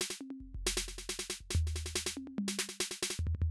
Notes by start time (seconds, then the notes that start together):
0.00 snare
0.10 snare
0.21 high tom
0.30 high tom
0.40 kick
0.54 kick
0.66 snare
0.77 snare
0.88 snare
1.09 snare
1.30 snare
1.40 kick
1.50 snare
1.55 floor tom
1.67 snare
1.76 snare
1.95 snare
2.06 snare
2.17 high tom
2.27 high tom
2.38 mid tom
2.48 snare
2.59 snare
2.69 snare
2.80 snare
2.91 snare
3.02 snare
3.10 snare
3.19 floor tom
3.27 floor tom
3.35 floor tom
3.42 floor tom